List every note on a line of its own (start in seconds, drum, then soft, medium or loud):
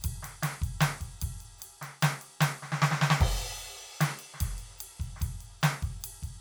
0.01 kick medium
0.01 hi-hat pedal medium
0.01 ride loud
0.23 snare soft
0.23 ride medium
0.43 snare loud
0.43 hi-hat pedal medium
0.43 ride loud
0.62 kick medium
0.62 ride medium
0.80 snare loud
0.80 hi-hat pedal medium
0.80 ride loud
1.01 kick soft
1.01 ride medium
1.20 kick medium
1.20 hi-hat pedal medium
1.20 ride loud
1.41 ride soft
1.59 snare soft
1.59 hi-hat pedal medium
1.59 ride loud
1.82 snare medium
1.82 ride medium
2.01 snare loud
2.01 hi-hat pedal medium
2.01 ride loud
2.21 ride medium
2.41 snare loud
2.41 hi-hat pedal medium
2.41 ride loud
2.62 snare medium
2.72 snare loud
2.81 snare loud
2.81 hi-hat pedal medium
2.91 snare loud
3.01 snare loud
3.10 snare loud
3.19 kick medium
3.19 hi-hat pedal medium
3.19 crash loud
3.58 hi-hat pedal medium
4.00 snare loud
4.00 hi-hat pedal medium
4.00 ride loud
4.19 ride medium
4.34 snare soft
4.38 kick medium
4.38 snare soft
4.38 ride loud
4.41 snare soft
4.41 hi-hat pedal medium
4.43 snare soft
4.49 snare soft
4.58 ride soft
4.71 snare soft
4.78 hi-hat pedal medium
4.78 ride loud
5.00 kick medium
5.00 ride soft
5.16 snare soft
5.16 hi-hat pedal medium
5.21 kick medium
5.21 ride loud
5.41 ride soft
5.61 snare loud
5.61 hi-hat pedal medium
5.61 ride loud
5.83 kick medium
5.83 ride soft
6.00 hi-hat pedal medium
6.00 ride loud
6.23 kick soft
6.23 ride soft